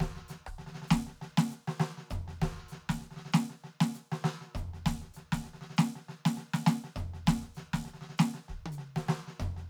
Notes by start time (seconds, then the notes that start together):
0.01 kick, snare
0.07 kick
0.17 snare
0.29 snare, hi-hat pedal
0.48 kick, cross-stick
0.59 snare
0.68 snare
0.73 snare
0.76 snare
0.83 snare
0.89 kick, snare, hi-hat pedal
1.08 snare
1.23 snare
1.39 snare
1.51 snare, hi-hat pedal
1.69 snare
1.81 snare
1.98 snare
2.11 kick, floor tom, hi-hat pedal
2.18 kick
2.21 kick
2.29 snare
2.43 kick, snare
2.57 snare
2.69 snare, hi-hat pedal
2.90 kick, snare
3.02 snare
3.12 snare
3.17 snare
3.26 snare
3.34 snare, hi-hat pedal
3.51 snare
3.65 snare
3.82 snare
3.95 snare, hi-hat pedal
4.13 snare
4.25 snare
4.42 snare
4.56 kick, floor tom, hi-hat pedal
4.65 kick
4.75 snare
4.87 kick, snare
4.93 kick
5.03 snare
5.15 snare, hi-hat pedal
5.33 kick, snare
5.45 snare
5.55 snare
5.62 snare
5.71 snare
5.78 snare, hi-hat pedal
5.97 snare
6.10 snare
6.27 snare
6.35 snare, hi-hat pedal
6.55 snare
6.68 snare
6.85 snare
6.97 kick, floor tom, hi-hat pedal
7.15 snare
7.28 kick, snare
7.37 kick
7.43 snare
7.56 snare, hi-hat pedal
7.74 kick, snare
7.86 snare
7.95 snare
8.02 snare
8.10 snare
8.19 snare, hi-hat pedal
8.35 snare
8.49 kick, snare
8.67 open hi-hat, high tom
8.73 hi-hat pedal
8.79 snare
8.96 kick, snare
9.10 snare
9.28 snare
9.41 kick, floor tom, hi-hat pedal
9.47 kick
9.58 snare